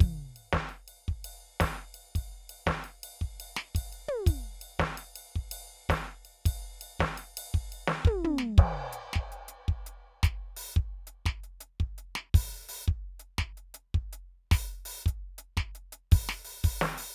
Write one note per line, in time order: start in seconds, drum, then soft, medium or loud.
0.01 kick loud
0.01 ride medium
0.36 ride soft
0.53 kick medium
0.53 snare loud
0.53 hi-hat pedal medium
0.70 ride soft
0.88 ride medium
1.09 kick medium
1.09 crash soft
1.16 ride soft
1.25 ride medium
1.61 kick medium
1.61 snare loud
1.61 hi-hat pedal medium
1.61 ride medium
1.95 ride medium
2.12 kick medium
2.12 ride soft
2.16 ride medium
2.50 ride medium
2.66 kick medium
2.66 snare loud
2.66 hi-hat pedal medium
2.84 ride soft
3.04 ride medium
3.22 kick medium
3.40 ride medium
3.57 snare loud
3.75 kick medium
3.75 ride loud
3.93 ride medium
4.09 high tom loud
4.27 kick loud
4.27 ride loud
4.55 ride soft
4.62 ride medium
4.79 kick medium
4.79 snare loud
4.79 hi-hat pedal medium
4.98 ride medium
5.16 ride medium
5.33 kick medium
5.33 ride soft
5.52 ride loud
5.80 ride soft
5.90 kick medium
5.90 snare loud
5.90 ride medium
6.25 ride soft
6.45 kick medium
6.45 hi-hat pedal soft
6.45 ride loud
6.82 ride medium
7.00 kick medium
7.00 snare loud
7.18 ride medium
7.38 ride loud
7.55 kick medium
7.73 ride bell medium
7.88 snare loud
8.05 kick loud
8.05 mid tom loud
8.24 floor tom loud
8.39 snare loud
8.58 kick loud
8.58 hi-hat pedal medium
8.58 crash loud
8.93 closed hi-hat loud
9.14 kick medium
9.14 snare loud
9.32 closed hi-hat medium
9.49 closed hi-hat loud
9.69 kick medium
9.87 closed hi-hat loud
10.24 closed hi-hat loud
10.24 kick medium
10.24 snare loud
10.57 open hi-hat loud
10.74 kick medium
10.74 hi-hat pedal medium
11.07 closed hi-hat loud
11.26 kick medium
11.26 snare loud
11.44 closed hi-hat medium
11.61 closed hi-hat loud
11.80 kick medium
11.99 closed hi-hat medium
12.16 snare loud
12.35 open hi-hat loud
12.35 kick loud
12.69 open hi-hat loud
12.85 kick medium
12.85 hi-hat pedal medium
13.20 closed hi-hat loud
13.39 kick medium
13.39 snare loud
13.58 closed hi-hat medium
13.75 closed hi-hat loud
13.95 kick medium
14.13 closed hi-hat loud
14.52 open hi-hat loud
14.52 kick loud
14.52 snare loud
14.86 open hi-hat loud
15.03 kick medium
15.03 hi-hat pedal medium
15.08 closed hi-hat loud
15.39 closed hi-hat loud
15.57 kick medium
15.57 snare loud
15.75 closed hi-hat medium
15.93 closed hi-hat loud
16.12 open hi-hat loud
16.12 kick loud
16.29 snare loud
16.45 open hi-hat loud
16.64 open hi-hat loud
16.64 kick medium
16.82 snare loud
16.98 open hi-hat loud